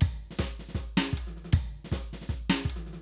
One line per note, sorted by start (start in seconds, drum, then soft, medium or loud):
0.01 kick loud
0.01 mid tom loud
0.31 snare medium
0.39 kick medium
0.39 snare loud
0.60 snare medium
0.69 snare medium
0.75 kick medium
0.75 snare medium
0.97 snare loud
1.13 kick medium
1.17 high tom medium
1.27 high tom medium
1.37 high tom medium
1.45 high tom loud
1.53 kick loud
1.53 mid tom loud
1.85 snare medium
1.92 kick medium
1.92 snare loud
2.13 snare medium
2.22 snare medium
2.29 kick medium
2.29 snare medium
2.50 snare loud
2.65 kick medium
2.70 high tom medium
2.76 high tom loud
2.87 high tom medium
2.93 high tom loud